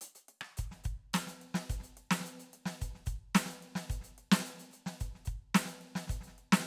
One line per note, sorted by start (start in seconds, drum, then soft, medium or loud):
0.01 closed hi-hat loud
0.15 closed hi-hat medium
0.28 closed hi-hat soft
0.41 cross-stick medium
0.57 closed hi-hat medium
0.57 kick soft
0.64 kick soft
0.67 kick soft
0.71 snare soft
0.79 snare soft
0.84 closed hi-hat medium
0.84 kick soft
1.13 closed hi-hat loud
1.13 snare medium
1.27 closed hi-hat medium
1.27 snare soft
1.41 closed hi-hat soft
1.54 snare medium
1.69 closed hi-hat medium
1.69 kick soft
1.69 snare soft
1.75 kick soft
1.80 closed hi-hat medium
1.80 snare soft
1.84 snare soft
1.88 snare soft
1.97 closed hi-hat soft
2.11 snare loud
2.20 snare soft
2.25 closed hi-hat medium
2.39 closed hi-hat medium
2.53 closed hi-hat medium
2.66 snare medium
2.81 closed hi-hat medium
2.81 kick soft
2.95 snare soft
3.00 snare soft
3.05 closed hi-hat medium
3.05 kick soft
3.05 hi-hat pedal soft
3.16 kick soft
3.34 closed hi-hat loud
3.34 snare loud
3.45 snare soft
3.50 open hi-hat medium
3.62 closed hi-hat soft
3.75 snare medium
3.87 closed hi-hat medium
3.87 kick soft
3.87 snare soft
4.01 closed hi-hat medium
4.01 snare soft
4.06 snare soft
4.18 closed hi-hat soft
4.31 snare loud
4.39 snare soft
4.46 closed hi-hat medium
4.55 snare soft
4.59 closed hi-hat medium
4.71 closed hi-hat medium
4.71 hi-hat pedal soft
4.86 snare medium
5.00 closed hi-hat medium
5.00 kick soft
5.15 snare soft
5.21 snare soft
5.25 closed hi-hat medium
5.25 kick soft
5.35 kick soft
5.54 closed hi-hat medium
5.54 snare loud
5.65 closed hi-hat soft
5.65 snare soft
5.81 closed hi-hat soft
5.95 snare medium
6.07 closed hi-hat medium
6.07 kick soft
6.07 snare soft
6.15 kick soft
6.21 closed hi-hat soft
6.21 snare soft
6.27 snare soft
6.38 closed hi-hat soft
6.52 snare loud
6.60 snare soft